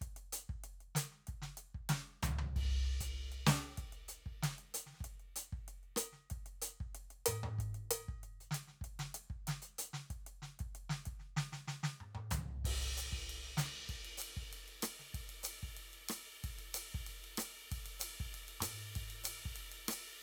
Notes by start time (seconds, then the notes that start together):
0.01 kick, closed hi-hat
0.16 closed hi-hat
0.32 closed hi-hat
0.49 kick
0.64 closed hi-hat
0.80 closed hi-hat
0.95 closed hi-hat, snare
1.12 snare
1.27 kick, closed hi-hat
1.42 snare, closed hi-hat
1.57 closed hi-hat
1.74 kick
1.89 snare, closed hi-hat
2.22 floor tom, hi-hat pedal
2.38 floor tom
2.56 kick, ride
2.83 snare
3.00 closed hi-hat, kick
3.32 closed hi-hat
3.46 open hi-hat, snare
3.62 snare
3.77 kick, closed hi-hat
3.92 closed hi-hat
4.08 closed hi-hat
4.26 kick
4.42 snare, closed hi-hat
4.58 closed hi-hat
4.74 closed hi-hat
4.86 snare
4.90 snare
4.94 snare
4.97 kick, snare
5.04 closed hi-hat
5.19 closed hi-hat
5.36 closed hi-hat
5.52 kick
5.68 closed hi-hat
5.83 closed hi-hat
5.96 closed hi-hat, cross-stick
6.12 snare
6.30 kick, closed hi-hat
6.46 closed hi-hat
6.62 closed hi-hat
6.80 kick
6.95 closed hi-hat
7.10 closed hi-hat
7.26 closed hi-hat, high tom
7.43 high tom
7.58 kick, closed hi-hat
7.74 closed hi-hat
7.91 closed hi-hat
8.08 kick
8.23 closed hi-hat
8.40 closed hi-hat
8.51 snare, closed hi-hat
8.67 snare
8.81 kick, closed hi-hat
8.99 snare, closed hi-hat
9.14 closed hi-hat
9.30 kick
9.47 snare, closed hi-hat
9.62 closed hi-hat
9.78 closed hi-hat
9.93 snare
10.10 kick, closed hi-hat
10.26 closed hi-hat
10.42 snare
10.59 kick, closed hi-hat
10.75 closed hi-hat
10.89 snare
11.05 kick, closed hi-hat
11.19 snare
11.36 snare
11.52 snare
11.67 snare
11.83 snare
12.00 high tom
12.15 high tom
12.31 floor tom, hi-hat pedal
12.64 kick, crash, ride
12.97 hi-hat pedal, ride
13.12 kick
13.29 ride
13.57 snare, hi-hat pedal, ride
13.89 kick, ride
14.05 ride
14.17 hi-hat pedal
14.22 ride
14.37 kick
14.53 ride
14.68 ride
14.82 cross-stick, hi-hat pedal, ride
14.99 snare
15.14 kick, ride
15.29 ride
15.43 hi-hat pedal, ride
15.63 kick
15.77 ride
15.93 ride
16.09 cross-stick, hi-hat pedal, ride
16.44 kick, ride
16.59 ride
16.74 hi-hat pedal, ride
16.94 kick
17.06 ride
17.24 ride
17.37 cross-stick, hi-hat pedal, ride
17.71 kick, ride
17.86 ride
17.99 hi-hat pedal, ride
18.20 kick
18.34 ride
18.48 ride
18.60 cross-stick, hi-hat pedal, high tom, ride
18.95 kick, ride
19.10 ride
19.24 hi-hat pedal, ride
19.45 kick
19.56 ride
19.72 ride
19.88 cross-stick, hi-hat pedal, ride